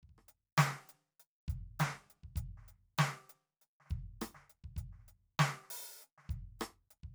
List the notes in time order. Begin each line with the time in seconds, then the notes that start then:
0.04 kick
0.09 kick
0.18 cross-stick
0.28 closed hi-hat
0.57 open hi-hat, snare, hi-hat pedal
0.68 snare
0.89 closed hi-hat
1.20 open hi-hat, hi-hat pedal
1.48 kick, snare, closed hi-hat
1.79 open hi-hat, snare, hi-hat pedal
2.10 closed hi-hat
2.23 kick
2.36 closed hi-hat, kick
2.57 snare
2.62 snare
2.68 closed hi-hat
2.98 closed hi-hat, snare
3.29 closed hi-hat
3.61 open hi-hat, hi-hat pedal
3.80 snare
3.85 snare
3.90 kick, closed hi-hat
3.99 kick
4.21 open hi-hat, cross-stick, hi-hat pedal
4.34 snare
4.49 closed hi-hat
4.64 kick
4.76 closed hi-hat, kick
4.92 snare
4.99 snare
5.08 closed hi-hat
5.39 closed hi-hat, snare
5.63 snare
5.70 open hi-hat
6.01 closed hi-hat, hi-hat pedal
6.18 snare
6.25 snare
6.29 closed hi-hat, kick
6.59 closed hi-hat, cross-stick, hi-hat pedal
6.90 closed hi-hat
7.03 kick